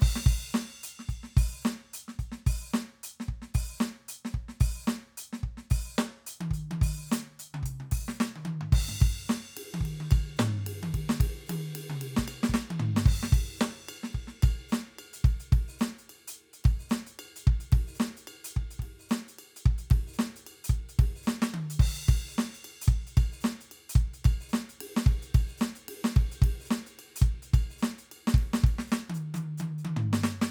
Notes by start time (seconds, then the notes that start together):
0.01 kick, crash
0.16 snare
0.26 open hi-hat, kick
0.50 snare, hi-hat pedal
0.83 closed hi-hat
0.99 snare
1.09 closed hi-hat, kick
1.23 snare
1.37 open hi-hat, kick
1.62 snare, hi-hat pedal
1.94 closed hi-hat
2.08 snare
2.19 closed hi-hat, kick
2.32 snare
2.47 open hi-hat, kick
2.70 snare, hi-hat pedal
3.03 closed hi-hat
3.20 snare
3.29 kick, closed hi-hat
3.42 snare
3.54 open hi-hat, kick
3.78 snare, hi-hat pedal
4.09 closed hi-hat
4.25 snare
4.34 kick, closed hi-hat
4.49 snare
4.60 open hi-hat, kick
4.84 snare, hi-hat pedal
5.17 closed hi-hat
5.33 snare
5.43 kick
5.57 snare
5.70 open hi-hat, kick
5.95 snare, hi-hat pedal
6.27 closed hi-hat
6.41 high tom
6.51 closed hi-hat, kick
6.71 high tom
6.82 open hi-hat, kick
7.08 snare, hi-hat pedal
7.13 closed hi-hat
7.39 closed hi-hat
7.54 mid tom
7.63 kick, closed hi-hat
7.80 mid tom
7.92 kick, open hi-hat
8.08 snare
8.14 hi-hat pedal
8.20 snare
8.36 high tom
8.45 high tom
8.61 floor tom
8.72 kick, crash
8.89 floor tom
9.01 kick, ride bell
9.26 snare, hi-hat pedal
9.57 ride
9.74 high tom
9.81 kick
9.85 ride
10.00 high tom
10.11 kick, ride bell
10.37 snare, floor tom, hi-hat pedal
10.67 ride
10.83 high tom
10.94 kick, ride
11.09 snare
11.20 kick, ride
11.47 hi-hat pedal, high tom, ride
11.75 ride
11.82 hi-hat pedal
11.90 mid tom
12.01 ride
12.17 kick, snare
12.28 ride bell
12.43 snare, hi-hat pedal
12.50 kick
12.54 snare
12.71 high tom
12.80 floor tom
12.97 snare
13.06 kick, crash
13.23 snare
13.32 kick, snare, ride, floor tom
13.58 snare, hi-hat pedal
13.89 ride bell
14.04 snare
14.13 kick, ride
14.27 snare
14.43 kick, ride bell
14.69 snare, hi-hat pedal
14.99 ride bell
15.13 closed hi-hat
15.24 kick, ride bell
15.40 closed hi-hat
15.52 kick, ride
15.68 open hi-hat
15.79 snare, hi-hat pedal
15.99 closed hi-hat
16.10 ride bell
16.28 closed hi-hat
16.35 ride
16.53 closed hi-hat
16.64 kick, ride bell, floor tom
16.79 open hi-hat
16.90 snare, hi-hat pedal
17.07 closed hi-hat
17.19 ride bell
17.36 closed hi-hat
17.47 kick
17.60 closed hi-hat
17.72 kick, ride, floor tom
17.87 open hi-hat
17.95 hi-hat pedal
18.00 snare
18.17 closed hi-hat
18.27 ride bell
18.45 closed hi-hat
18.56 kick
18.71 closed hi-hat
18.79 kick, snare, ride, floor tom
18.99 open hi-hat
19.09 snare, hi-hat pedal
19.28 closed hi-hat
19.39 ride bell
19.56 closed hi-hat
19.66 kick
19.78 closed hi-hat
19.90 kick, ride, floor tom
20.07 open hi-hat
20.14 hi-hat pedal
20.19 snare
20.36 closed hi-hat
20.47 ride bell
20.64 closed hi-hat
20.70 kick
20.89 closed hi-hat
20.99 kick, ride, floor tom
21.16 open hi-hat
21.23 hi-hat pedal
21.27 snare
21.42 snare
21.54 high tom
21.70 closed hi-hat
21.80 kick, crash
21.96 closed hi-hat
22.09 kick, ride bell
22.28 open hi-hat, hi-hat pedal
22.38 snare
22.54 closed hi-hat
22.65 ride bell
22.82 closed hi-hat
22.88 kick
23.07 closed hi-hat
23.17 kick, ride bell
23.32 open hi-hat
23.41 snare, hi-hat pedal
23.61 closed hi-hat
23.71 ride bell
23.90 closed hi-hat
23.96 kick
24.14 closed hi-hat
24.25 kick, ride bell
24.40 open hi-hat
24.49 hi-hat pedal
24.53 snare
24.69 closed hi-hat
24.81 ride
24.97 snare
25.06 kick, ride
25.22 closed hi-hat
25.35 kick, ride bell
25.48 open hi-hat
25.58 snare, hi-hat pedal
25.75 closed hi-hat
25.89 ride
26.04 snare
26.16 kick, ride
26.32 closed hi-hat
26.42 kick, ride
26.60 open hi-hat
26.66 hi-hat pedal
26.71 snare
26.86 closed hi-hat
26.99 ride bell
27.16 closed hi-hat
27.22 kick
27.42 closed hi-hat
27.54 kick, ride bell
27.70 open hi-hat
27.79 hi-hat pedal
27.83 snare
27.98 closed hi-hat
28.12 ride bell
28.27 snare
28.34 kick, ride
28.54 snare
28.64 kick, ride bell
28.79 snare
28.88 hi-hat pedal
28.92 snare
29.10 high tom
29.14 hi-hat pedal
29.34 hi-hat pedal, high tom
29.58 hi-hat pedal, high tom
29.78 hi-hat pedal
29.85 high tom
29.97 floor tom
30.13 snare
30.24 snare, hi-hat pedal
30.42 snare